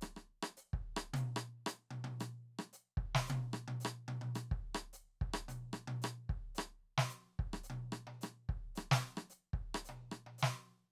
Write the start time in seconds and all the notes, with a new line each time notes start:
0.01 cross-stick, hi-hat pedal
0.16 cross-stick
0.43 cross-stick
0.57 hi-hat pedal
0.73 kick
0.97 cross-stick
1.14 hi-hat pedal, high tom
1.36 cross-stick
1.66 cross-stick, hi-hat pedal
1.91 high tom
2.04 high tom
2.20 cross-stick, hi-hat pedal
2.59 cross-stick
2.73 hi-hat pedal
2.97 kick
3.15 snare
3.27 hi-hat pedal, high tom
3.53 cross-stick
3.68 high tom
3.80 hi-hat pedal
3.85 cross-stick
4.08 high tom
4.21 high tom
4.35 cross-stick, hi-hat pedal
4.51 kick
4.75 cross-stick
4.93 hi-hat pedal
5.21 kick
5.34 cross-stick
5.48 hi-hat pedal, high tom
5.73 cross-stick
5.88 high tom
6.02 cross-stick, hi-hat pedal
6.29 kick
6.55 cross-stick, hi-hat pedal
6.98 snare
7.09 hi-hat pedal
7.39 kick
7.53 cross-stick
7.64 hi-hat pedal
7.70 high tom
7.92 cross-stick
8.07 high tom
8.21 cross-stick, hi-hat pedal
8.49 kick
8.75 cross-stick, hi-hat pedal
8.91 snare
9.17 cross-stick
9.30 hi-hat pedal
9.53 kick
9.74 cross-stick
9.85 hi-hat pedal
9.89 high tom
10.12 cross-stick
10.26 high tom
10.38 hi-hat pedal
10.43 snare